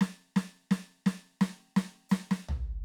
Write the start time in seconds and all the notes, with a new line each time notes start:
0.01 snare
0.36 snare
0.71 snare
1.07 snare
1.41 snare
1.77 snare
2.10 snare, hi-hat pedal
2.31 snare
2.49 floor tom